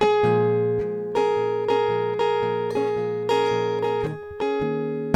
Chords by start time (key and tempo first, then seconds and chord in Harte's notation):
A# minor, 110 BPM
0.00 F:7(#9,*5)
0.27 A#:min7
4.63 D#:sus4(b7)